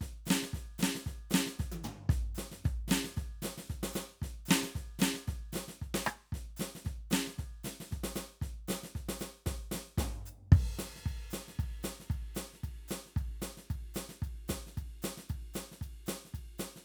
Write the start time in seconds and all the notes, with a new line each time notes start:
0.01 kick, snare
0.26 snare, hi-hat pedal
0.30 snare
0.43 snare
0.53 kick, snare
0.78 snare, hi-hat pedal
0.83 snare
0.95 snare
1.06 kick, snare
1.30 snare, hi-hat pedal
1.34 snare
1.47 snare
1.59 kick, snare
1.72 high tom
1.84 floor tom, hi-hat pedal
2.09 kick, snare
2.35 snare, hi-hat pedal
2.52 snare
2.64 kick, snare
2.88 snare, hi-hat pedal
2.91 snare
3.04 snare
3.17 kick, snare
3.42 snare, hi-hat pedal
3.45 snare
3.58 snare
3.70 kick, snare
3.83 snare
3.93 snare, hi-hat pedal
4.22 kick, snare
4.46 snare, hi-hat pedal
4.51 snare
4.63 snare
4.75 kick, snare
4.99 snare, hi-hat pedal
5.02 snare
5.14 snare
5.28 kick, snare
5.53 snare, hi-hat pedal
5.56 snare
5.68 snare
5.82 kick, snare
5.94 snare
6.04 cross-stick, hi-hat pedal
6.32 kick, snare
6.57 snare, hi-hat pedal
6.61 snare
6.75 snare
6.85 kick, snare
7.11 snare, hi-hat pedal
7.13 snare
7.27 snare
7.38 kick, snare
7.64 snare, hi-hat pedal
7.66 snare
7.80 snare
7.91 kick, snare
8.04 snare
8.15 snare, hi-hat pedal
8.42 kick, snare
8.68 snare, hi-hat pedal
8.70 snare
8.84 snare
8.95 kick, snare
9.09 snare
9.19 snare, hi-hat pedal
9.46 kick, snare
9.71 snare, hi-hat pedal
9.74 snare
9.98 kick, snare, floor tom
10.26 hi-hat pedal
10.52 kick, crash
10.79 snare, hi-hat pedal, ride
10.96 snare
11.06 kick, ride
11.31 snare, hi-hat pedal, ride
11.48 snare
11.59 kick, ride
11.83 snare, hi-hat pedal, ride
12.00 snare
12.10 kick, ride
12.35 snare, hi-hat pedal, ride
12.54 snare
12.64 kick, ride
12.88 snare, hi-hat pedal, ride
13.06 snare
13.16 kick, ride
13.42 snare, hi-hat pedal, ride
13.57 snare
13.70 kick, ride
13.94 snare, hi-hat pedal, ride
14.09 snare
14.22 kick, ride
14.48 kick, snare, hi-hat pedal, ride
14.67 snare
14.77 kick, ride
15.02 snare, hi-hat pedal, ride
15.18 snare
15.29 kick, ride
15.54 snare, hi-hat pedal, ride
15.72 snare
15.81 kick, ride
16.06 snare, hi-hat pedal, ride
16.25 snare
16.34 kick, ride
16.59 snare, hi-hat pedal, ride
16.76 snare